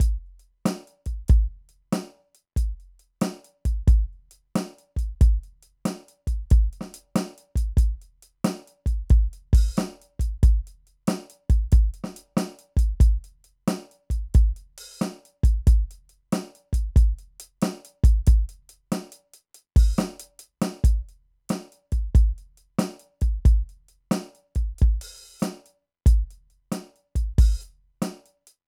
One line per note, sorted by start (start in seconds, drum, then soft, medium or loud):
0.00 kick medium
0.00 closed hi-hat loud
0.26 closed hi-hat soft
0.39 closed hi-hat soft
0.65 snare loud
0.65 closed hi-hat loud
0.87 closed hi-hat soft
1.06 kick medium
1.06 closed hi-hat medium
1.28 kick loud
1.28 closed hi-hat medium
1.69 closed hi-hat soft
1.92 snare loud
1.92 closed hi-hat loud
2.35 closed hi-hat soft
2.56 kick medium
2.56 closed hi-hat loud
2.80 closed hi-hat soft
2.99 closed hi-hat soft
3.21 snare loud
3.21 closed hi-hat loud
3.44 closed hi-hat medium
3.65 kick medium
3.65 closed hi-hat medium
3.87 kick loud
3.87 closed hi-hat medium
4.13 closed hi-hat soft
4.31 closed hi-hat medium
4.55 snare loud
4.55 closed hi-hat loud
4.78 closed hi-hat soft
4.96 kick medium
4.96 closed hi-hat medium
5.21 kick loud
5.21 closed hi-hat loud
5.43 closed hi-hat soft
5.62 closed hi-hat medium
5.85 snare loud
5.85 closed hi-hat loud
6.08 closed hi-hat medium
6.27 kick medium
6.27 closed hi-hat medium
6.50 kick loud
6.50 closed hi-hat medium
6.73 closed hi-hat soft
6.81 snare medium
6.94 closed hi-hat loud
7.15 snare loud
7.15 closed hi-hat loud
7.38 closed hi-hat medium
7.55 kick medium
7.55 closed hi-hat loud
7.77 kick loud
7.77 closed hi-hat loud
8.01 closed hi-hat soft
8.22 closed hi-hat medium
8.44 snare loud
8.44 closed hi-hat loud
8.67 closed hi-hat medium
8.86 kick medium
8.86 closed hi-hat medium
9.10 kick loud
9.10 closed hi-hat medium
9.33 closed hi-hat medium
9.53 kick loud
9.53 open hi-hat loud
9.77 snare loud
9.77 hi-hat pedal loud
9.77 open hi-hat loud
10.01 closed hi-hat medium
10.19 kick medium
10.19 closed hi-hat medium
10.43 kick loud
10.43 closed hi-hat loud
10.67 closed hi-hat medium
10.87 closed hi-hat soft
11.07 snare loud
11.07 closed hi-hat loud
11.30 closed hi-hat medium
11.49 kick loud
11.49 closed hi-hat medium
11.72 kick loud
11.72 closed hi-hat loud
11.94 closed hi-hat medium
12.04 snare medium
12.16 closed hi-hat loud
12.37 snare loud
12.37 closed hi-hat loud
12.59 closed hi-hat medium
12.76 kick loud
12.76 closed hi-hat loud
13.00 kick loud
13.00 closed hi-hat loud
13.24 closed hi-hat medium
13.44 closed hi-hat soft
13.68 snare loud
13.68 closed hi-hat loud
13.91 closed hi-hat soft
14.10 kick medium
14.10 closed hi-hat medium
14.34 kick loud
14.34 closed hi-hat loud
14.56 closed hi-hat medium
14.78 open hi-hat loud
15.01 snare loud
15.01 hi-hat pedal loud
15.01 open hi-hat loud
15.25 closed hi-hat medium
15.43 kick loud
15.43 closed hi-hat medium
15.67 kick loud
15.67 closed hi-hat loud
15.91 closed hi-hat medium
16.09 closed hi-hat soft
16.32 snare loud
16.32 closed hi-hat loud
16.55 closed hi-hat medium
16.73 kick medium
16.73 closed hi-hat loud
16.96 kick loud
16.96 closed hi-hat loud
17.18 closed hi-hat soft
17.40 closed hi-hat loud
17.62 snare loud
17.62 closed hi-hat loud
17.85 closed hi-hat medium
18.04 kick loud
18.04 closed hi-hat loud
18.26 kick loud
18.26 closed hi-hat loud
18.49 closed hi-hat medium
18.69 closed hi-hat medium
18.92 snare loud
18.92 closed hi-hat loud
19.12 closed hi-hat medium
19.33 closed hi-hat medium
19.54 closed hi-hat medium
19.76 kick loud
19.76 open hi-hat loud
19.98 snare loud
19.98 hi-hat pedal loud
19.98 open hi-hat loud
20.19 closed hi-hat loud
20.39 closed hi-hat loud
20.62 snare loud
20.62 closed hi-hat loud
20.84 kick loud
20.84 closed hi-hat loud
21.09 closed hi-hat soft
21.49 snare loud
21.49 closed hi-hat loud
21.72 closed hi-hat medium
21.92 kick medium
21.92 closed hi-hat medium
22.15 kick loud
22.15 closed hi-hat medium
22.38 closed hi-hat soft
22.57 closed hi-hat soft
22.79 snare loud
22.79 closed hi-hat loud
22.99 closed hi-hat medium
23.21 kick medium
23.21 closed hi-hat medium
23.45 kick loud
23.45 closed hi-hat medium
23.69 closed hi-hat soft
23.88 closed hi-hat soft
24.11 snare loud
24.11 closed hi-hat loud
24.35 closed hi-hat soft
24.55 kick medium
24.55 closed hi-hat medium
24.78 kick loud
24.78 closed hi-hat medium
25.01 open hi-hat loud
25.39 snare loud
25.39 closed hi-hat loud
25.39 hi-hat pedal loud
25.66 closed hi-hat medium
26.06 closed hi-hat loud
26.06 kick loud
26.30 closed hi-hat soft
26.50 closed hi-hat soft
26.72 snare medium
26.72 closed hi-hat loud
26.96 closed hi-hat soft
27.15 kick medium
27.15 closed hi-hat medium
27.38 kick loud
27.38 open hi-hat loud
27.61 hi-hat pedal loud
28.02 closed hi-hat loud
28.02 snare loud
28.26 closed hi-hat soft
28.47 closed hi-hat medium